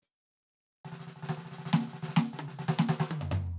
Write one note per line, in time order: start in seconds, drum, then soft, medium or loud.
0.00 hi-hat pedal soft
0.86 snare medium
0.93 snare medium
1.01 snare medium
1.08 snare medium
1.17 snare soft
1.24 snare medium
1.30 snare loud
1.38 snare medium
1.46 snare soft
1.52 snare medium
1.59 snare medium
1.66 snare medium
1.74 snare loud
1.81 snare medium
1.88 snare soft
1.94 snare medium
2.03 snare medium
2.09 snare medium
2.17 snare loud
2.34 snare medium
2.40 high tom medium
2.49 snare medium
2.60 snare medium
2.69 snare loud
2.80 snare loud
2.90 snare loud
3.01 snare loud
3.12 high tom loud
3.22 floor tom medium
3.32 floor tom loud